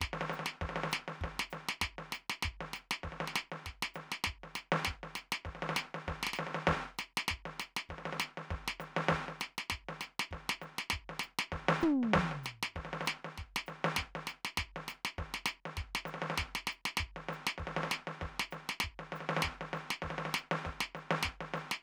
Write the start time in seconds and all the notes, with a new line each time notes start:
0.01 kick, snare
0.13 snare
0.21 snare
0.30 snare, hi-hat pedal
0.39 snare
0.46 snare
0.61 kick, snare
0.69 snare
0.76 snare
0.84 snare
0.91 snare, hi-hat pedal
1.08 snare
1.21 kick, snare
1.40 snare
1.50 snare, hi-hat pedal
1.69 snare
1.82 kick, snare
1.98 snare
2.12 snare, hi-hat pedal
2.30 snare
2.43 kick, snare
2.61 snare
2.73 snare, hi-hat pedal
2.91 snare
3.04 kick, snare
3.12 snare
3.20 snare
3.28 snare
3.35 snare, hi-hat pedal
3.52 snare
3.66 kick, snare
3.83 snare
3.94 snare, hi-hat pedal
4.12 snare
4.24 kick, snare
4.44 snare
4.55 snare, hi-hat pedal
4.72 snare
4.85 kick, snare
5.03 snare
5.16 snare, hi-hat pedal
5.32 snare
5.45 kick, snare
5.62 snare
5.69 snare
5.76 snare, hi-hat pedal
5.94 snare
6.08 kick, snare
6.23 snare
6.27 snare
6.33 snare, hi-hat pedal
6.39 snare
6.47 snare
6.55 snare
6.63 snare
6.67 kick, snare
6.73 snare
6.98 snare, hi-hat pedal
7.17 snare
7.28 kick, snare
7.46 snare
7.60 snare, hi-hat pedal
7.77 snare
7.89 kick, snare
7.98 snare
8.06 snare
8.13 snare
8.20 snare, hi-hat pedal
8.38 snare
8.51 kick, snare
8.68 snare
8.80 snare, hi-hat pedal
8.97 snare
9.09 kick, snare
9.28 snare
9.40 snare, hi-hat pedal
9.58 snare
9.70 kick, snare
9.89 snare
10.01 snare, hi-hat pedal
10.20 snare
10.31 kick, snare
10.49 snare
10.62 snare, hi-hat pedal
10.78 snare
10.90 kick, snare
11.09 snare
11.20 snare, hi-hat pedal
11.39 snare
11.52 kick, snare
11.69 snare
11.81 floor tom, hi-hat pedal
12.03 snare
12.14 kick, snare
12.31 snare
12.43 snare, hi-hat pedal
12.63 snare
12.76 kick, snare
12.85 snare
12.93 snare
13.01 snare
13.05 snare, hi-hat pedal
13.25 snare
13.38 kick, snare
13.56 snare
13.66 snare, hi-hat pedal
13.84 snare
13.96 kick, snare
14.15 snare
14.27 snare, hi-hat pedal
14.45 snare
14.57 kick, snare
14.76 snare
14.88 snare, hi-hat pedal
15.05 snare
15.18 kick, snare
15.34 snare
15.46 snare, hi-hat pedal
15.66 snare
15.77 kick, snare
15.95 snare
16.05 snare, hi-hat pedal
16.14 snare
16.22 snare
16.30 snare
16.38 kick, snare
16.55 snare
16.67 snare
16.71 hi-hat pedal
16.85 snare
16.97 kick, snare
17.16 snare
17.29 snare, hi-hat pedal
17.47 snare
17.58 kick, snare
17.67 snare
17.77 snare
17.83 snare
17.91 snare, hi-hat pedal
18.07 snare
18.21 kick, snare
18.40 snare
18.51 snare, hi-hat pedal
18.69 snare
18.80 kick, snare
18.99 snare
19.12 snare, hi-hat pedal
19.21 snare
19.29 snare
19.37 snare
19.42 kick, snare
19.61 snare
19.73 snare, hi-hat pedal
19.91 snare
20.02 kick, snare
20.10 snare
20.18 snare
20.25 snare
20.34 snare, hi-hat pedal
20.51 snare
20.65 kick, snare
20.81 snare
20.95 snare, hi-hat pedal
21.11 snare
21.23 kick, snare
21.41 snare
21.54 snare, hi-hat pedal
21.71 snare